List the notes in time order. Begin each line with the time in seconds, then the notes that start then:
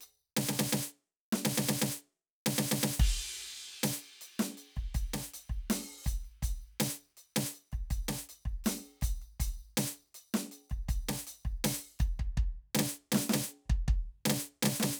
0.01 hi-hat pedal
0.37 snare
0.49 snare
0.59 snare
0.73 snare
1.33 snare
1.45 snare
1.58 snare
1.69 snare
1.82 snare
2.46 snare
2.58 snare
2.72 snare
2.83 snare
3.00 kick, crash
3.38 crash
3.83 closed hi-hat, snare
4.03 closed hi-hat
4.21 closed hi-hat
4.40 snare, closed hi-hat
4.58 closed hi-hat
4.76 kick, closed hi-hat
4.95 closed hi-hat, kick
5.14 snare
5.34 closed hi-hat
5.50 kick
5.70 snare, percussion
6.05 closed hi-hat, kick, hi-hat pedal
6.25 closed hi-hat
6.43 closed hi-hat, kick
6.80 closed hi-hat, snare
6.99 closed hi-hat
7.17 closed hi-hat
7.36 snare, closed hi-hat
7.54 closed hi-hat
7.72 kick, closed hi-hat
7.91 closed hi-hat, kick
8.09 snare
8.29 closed hi-hat
8.46 kick
8.64 snare, hi-hat pedal, percussion
9.02 closed hi-hat, kick, hi-hat pedal
9.22 closed hi-hat
9.40 closed hi-hat, kick
9.77 closed hi-hat, snare
9.96 closed hi-hat
10.15 closed hi-hat
10.34 snare, closed hi-hat
10.52 closed hi-hat
10.70 kick, closed hi-hat
10.89 closed hi-hat, kick
11.09 snare
11.27 closed hi-hat
11.45 kick
11.64 snare, percussion
11.99 kick, hi-hat pedal
12.20 kick
12.27 kick
12.38 kick
12.75 snare
12.79 snare
13.12 snare
13.15 snare
13.30 snare
13.34 snare
13.66 kick
13.70 kick
13.88 kick
13.92 crash, ride
14.26 snare
14.30 snare
14.63 snare
14.66 snare
14.80 snare
14.83 snare